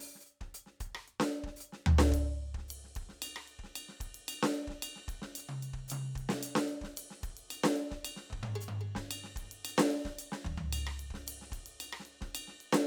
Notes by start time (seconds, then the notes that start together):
0.01 open hi-hat
0.16 snare
0.21 hi-hat pedal
0.27 closed hi-hat
0.41 kick, snare
0.55 closed hi-hat
0.67 snare
0.81 closed hi-hat, kick
0.96 cross-stick
1.08 closed hi-hat
1.20 kick, snare
1.34 closed hi-hat
1.44 kick, snare
1.57 hi-hat pedal
1.61 closed hi-hat
1.73 snare
1.87 floor tom
1.99 snare
2.08 hi-hat pedal
2.12 kick, ride
2.18 kick
2.55 kick, snare
2.69 hi-hat pedal, ride
2.85 snare
2.96 kick, ride
3.03 kick
3.09 snare
3.23 hi-hat pedal, ride bell
3.37 cross-stick
3.48 ride
3.60 kick
3.64 snare
3.76 hi-hat pedal, ride bell
3.89 snare
3.98 kick, cross-stick
4.02 ride
4.15 ride
4.29 hi-hat pedal, ride bell
4.43 snare
4.55 ride
4.68 kick, snare
4.83 hi-hat pedal, ride bell
4.96 snare
5.09 kick, ride
5.15 kick
5.22 snare
5.36 hi-hat pedal, ride bell
5.50 high tom
5.63 ride bell
5.74 kick
5.80 kick
5.89 hi-hat pedal, high tom, ride bell
6.16 kick, ride
6.22 kick
6.30 snare
6.43 hi-hat pedal, ride bell
6.56 snare
6.69 ride
6.82 kick, snare
6.97 hi-hat pedal, ride
7.11 snare
7.21 kick, snare, ride
7.30 kick
7.37 ride
7.51 hi-hat pedal, ride bell
7.64 snare
7.77 ride
7.92 kick, snare
7.97 kick
8.05 hi-hat pedal, ride bell
8.17 snare
8.31 kick, mid tom
8.44 mid tom
8.56 percussion
8.61 hi-hat pedal
8.69 mid tom
8.82 percussion
8.96 kick, snare
9.11 hi-hat pedal, ride bell
9.24 snare
9.36 kick, snare, ride
9.43 kick, snare
9.46 snare
9.52 snare, ride
9.66 hi-hat pedal, ride bell
9.79 snare
9.91 ride
10.06 kick, snare
10.11 kick
10.19 hi-hat pedal, ride bell
10.33 snare
10.45 kick, floor tom
10.53 kick
10.58 floor tom
10.73 hi-hat pedal, ride bell
10.87 cross-stick
11.00 ride
11.11 kick, snare
11.27 hi-hat pedal, ride
11.42 snare
11.51 kick, snare, ride
11.67 ride
11.81 hi-hat pedal, ride bell
11.93 cross-stick
12.00 snare
12.06 ride
12.22 kick, snare
12.35 hi-hat pedal, ride bell
12.48 snare
12.61 ride
12.73 snare